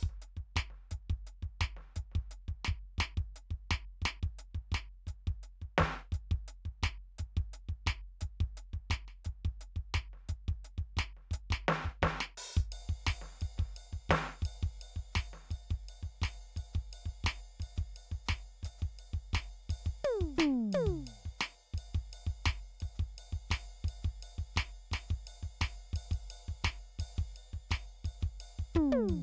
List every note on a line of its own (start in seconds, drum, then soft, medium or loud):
0.01 kick medium
0.01 hi-hat pedal soft
0.10 snare soft
0.22 closed hi-hat medium
0.37 kick soft
0.56 closed hi-hat loud
0.56 kick medium
0.56 snare loud
0.70 snare soft
0.91 closed hi-hat loud
0.91 kick soft
1.10 kick medium
1.27 closed hi-hat medium
1.43 kick soft
1.61 closed hi-hat medium
1.61 kick medium
1.61 snare loud
1.77 snare soft
1.96 closed hi-hat loud
1.96 kick soft
2.12 kick medium
2.12 snare soft
2.16 snare soft
2.31 closed hi-hat medium
2.48 kick soft
2.65 closed hi-hat medium
2.65 kick medium
2.65 snare loud
2.98 closed hi-hat medium
2.98 kick soft
2.98 snare loud
3.18 kick medium
3.36 closed hi-hat medium
3.51 kick soft
3.71 closed hi-hat medium
3.71 kick medium
3.71 snare loud
4.02 closed hi-hat medium
4.02 kick soft
4.02 snare loud
4.23 kick medium
4.39 closed hi-hat medium
4.55 kick soft
4.72 closed hi-hat medium
4.72 kick medium
4.72 snare loud
5.07 closed hi-hat medium
5.07 kick soft
5.27 kick medium
5.43 closed hi-hat medium
5.62 kick soft
5.78 closed hi-hat medium
5.78 kick medium
5.78 snare loud
6.12 closed hi-hat medium
6.12 kick soft
6.32 kick medium
6.48 closed hi-hat loud
6.66 kick soft
6.83 closed hi-hat medium
6.83 kick medium
6.83 snare loud
7.19 closed hi-hat loud
7.19 kick soft
7.37 kick medium
7.54 closed hi-hat medium
7.69 kick soft
7.87 closed hi-hat loud
7.87 kick medium
7.87 snare loud
8.21 closed hi-hat loud
8.21 kick soft
8.41 kick medium
8.57 closed hi-hat medium
8.74 kick soft
8.90 closed hi-hat loud
8.90 kick medium
8.90 snare loud
9.08 snare soft
9.25 closed hi-hat medium
9.25 kick soft
9.45 kick medium
9.61 closed hi-hat medium
9.76 kick soft
9.94 closed hi-hat medium
9.94 kick medium
9.94 snare loud
10.14 snare soft
10.29 closed hi-hat loud
10.29 kick soft
10.48 kick medium
10.65 closed hi-hat medium
10.78 kick soft
10.97 closed hi-hat loud
10.97 kick medium
10.97 snare loud
11.17 snare soft
11.31 kick soft
11.31 closed hi-hat loud
11.51 kick medium
11.51 snare loud
11.69 snare loud
11.85 kick soft
12.03 kick medium
12.03 snare loud
12.21 snare loud
12.38 open hi-hat loud
12.56 kick medium
12.56 hi-hat pedal soft
12.72 ride medium
12.89 kick soft
13.07 kick medium
13.07 snare loud
13.07 ride medium
13.22 snare soft
13.41 kick soft
13.41 ride medium
13.58 kick medium
13.58 snare soft
13.77 ride medium
13.93 kick soft
14.10 kick medium
14.10 snare loud
14.10 ride medium
14.26 snare soft
14.42 kick soft
14.42 ride medium
14.63 kick medium
14.82 ride medium
14.96 kick soft
15.12 kick medium
15.12 snare loud
15.12 hi-hat pedal medium
15.18 ride medium
15.34 snare soft
15.51 kick soft
15.51 ride soft
15.70 kick medium
15.70 hi-hat pedal medium
15.89 ride medium
16.03 kick soft
16.22 kick medium
16.22 snare medium
16.22 hi-hat pedal medium
16.22 ride medium
16.57 kick soft
16.57 ride medium
16.73 kick medium
16.73 hi-hat pedal medium
16.93 ride medium
17.06 kick soft
17.24 kick medium
17.24 snare loud
17.24 hi-hat pedal medium
17.24 ride medium
17.60 kick soft
17.60 ride medium
17.77 kick medium
17.77 hi-hat pedal medium
17.96 ride medium
18.12 kick soft
18.26 kick medium
18.26 snare loud
18.26 hi-hat pedal medium
18.30 ride medium
18.63 closed hi-hat medium
18.63 kick soft
18.63 ride medium
18.78 hi-hat pedal medium
18.82 kick soft
18.99 ride soft
19.14 kick soft
19.33 kick medium
19.33 snare loud
19.33 hi-hat pedal medium
19.33 ride medium
19.70 kick soft
19.70 ride medium
19.85 kick soft
19.85 hi-hat pedal medium
20.04 high tom loud
20.04 ride medium
20.21 kick medium
20.36 floor tom loud
20.36 hi-hat pedal medium
20.40 snare loud
20.73 high tom loud
20.73 ride medium
20.87 kick medium
20.87 hi-hat pedal medium
21.07 ride medium
21.26 kick soft
21.38 snare loud
21.38 hi-hat pedal medium
21.42 ride medium
21.74 kick soft
21.78 ride medium
21.94 kick medium
21.94 hi-hat pedal medium
22.13 ride medium
22.27 kick soft
22.44 kick medium
22.44 snare loud
22.44 hi-hat pedal medium
22.44 ride soft
22.81 kick soft
22.81 ride medium
22.95 hi-hat pedal medium
23.00 kick medium
23.18 ride medium
23.33 kick soft
23.49 kick medium
23.49 snare loud
23.49 hi-hat pedal medium
23.53 ride medium
23.85 kick soft
23.89 ride medium
24.02 kick medium
24.02 hi-hat pedal medium
24.23 ride medium
24.39 kick soft
24.54 kick medium
24.54 snare loud
24.54 hi-hat pedal medium
24.58 ride medium
24.92 kick soft
24.92 snare medium
24.92 ride medium
25.08 kick medium
25.08 hi-hat pedal medium
25.27 ride medium
25.43 kick soft
25.61 kick medium
25.61 snare loud
25.61 hi-hat pedal medium
25.61 ride medium
25.93 kick soft
25.93 ride medium
26.10 kick medium
26.10 hi-hat pedal medium
26.10 ride soft
26.30 ride medium
26.49 kick soft
26.62 kick medium
26.62 snare loud
26.62 hi-hat pedal medium
26.62 ride medium
26.99 kick soft
26.99 ride medium
27.16 kick medium
27.16 hi-hat pedal medium
27.36 ride soft
27.54 kick soft
27.69 kick medium
27.69 snare loud
27.69 hi-hat pedal medium
27.69 ride medium
28.05 kick soft
28.05 ride medium
28.21 kick medium
28.21 hi-hat pedal medium
28.40 ride medium
28.59 kick soft
28.74 kick medium
28.74 floor tom loud
28.74 hi-hat pedal medium
28.92 hi-hat pedal soft
28.92 high tom loud
29.09 kick soft
29.09 ride medium